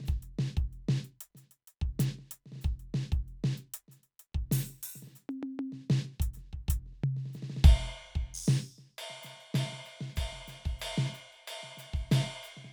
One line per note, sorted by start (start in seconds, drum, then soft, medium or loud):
0.01 snare soft
0.04 snare soft
0.04 closed hi-hat soft
0.04 hi-hat pedal soft
0.09 kick medium
0.09 snare soft
0.23 closed hi-hat soft
0.39 snare medium
0.57 kick medium
0.57 closed hi-hat soft
0.73 closed hi-hat soft
0.89 snare loud
1.05 closed hi-hat soft
1.21 open hi-hat medium
1.35 snare soft
1.35 hi-hat pedal medium
1.51 closed hi-hat soft
1.68 closed hi-hat soft
1.82 kick medium
2.00 open hi-hat loud
2.00 snare loud
2.19 snare soft
2.31 open hi-hat loud
2.46 snare soft
2.52 snare soft
2.56 snare soft
2.59 snare soft
2.59 hi-hat pedal medium
2.64 kick medium
2.64 snare soft
2.64 closed hi-hat soft
2.80 closed hi-hat soft
2.95 snare medium
3.12 kick medium
3.12 closed hi-hat soft
3.28 closed hi-hat soft
3.44 snare loud
3.58 closed hi-hat soft
3.74 closed hi-hat loud
3.89 snare soft
3.89 hi-hat pedal medium
4.04 closed hi-hat soft
4.20 closed hi-hat medium
4.35 kick medium
4.52 open hi-hat loud
4.52 snare loud
4.71 snare soft
4.83 open hi-hat loud
4.96 snare soft
5.03 snare soft
5.08 snare soft
5.16 hi-hat pedal medium
5.30 closed hi-hat soft
5.30 high tom loud
5.43 high tom loud
5.59 high tom loud
5.73 snare soft
5.90 snare loud
6.05 snare soft
6.20 open hi-hat medium
6.20 kick medium
6.34 snare soft
6.34 hi-hat pedal medium
6.53 kick soft
6.69 open hi-hat loud
6.69 kick medium
6.87 snare soft
6.93 snare soft
7.04 floor tom loud
7.17 snare soft
7.26 snare soft
7.31 snare soft
7.31 hi-hat pedal medium
7.36 snare soft
7.43 snare soft
7.50 snare soft
7.57 snare soft
7.65 kick loud
7.65 ride loud
8.16 kick medium
8.35 crash loud
8.48 snare loud
8.79 snare soft
8.98 hi-hat pedal medium
8.98 ride loud
9.10 snare soft
9.23 snare soft
9.23 hi-hat pedal medium
9.23 ride medium
9.41 ride soft
9.55 snare loud
9.55 ride loud
9.73 snare soft
9.85 hi-hat pedal soft
9.85 ride soft
10.01 snare medium
10.16 kick soft
10.16 hi-hat pedal medium
10.16 ride loud
10.33 snare soft
10.48 snare soft
10.48 hi-hat pedal medium
10.48 ride medium
10.66 kick soft
10.66 ride soft
10.79 hi-hat pedal medium
10.79 ride loud
10.98 snare loud
11.14 hi-hat pedal medium
11.14 ride soft
11.33 ride soft
11.48 hi-hat pedal medium
11.48 ride loud
11.64 snare soft
11.78 snare soft
11.78 hi-hat pedal medium
11.78 ride medium
11.94 kick soft
11.94 ride soft
12.11 snare loud
12.11 hi-hat pedal soft
12.11 ride loud
12.43 hi-hat pedal medium
12.43 ride medium
12.57 snare soft
12.65 snare soft